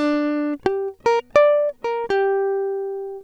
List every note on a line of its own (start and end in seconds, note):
0.00 0.60 D4
0.68 0.98 G4
1.08 1.24 A#4
1.37 1.76 D5
1.86 2.11 A#4
2.12 3.24 G4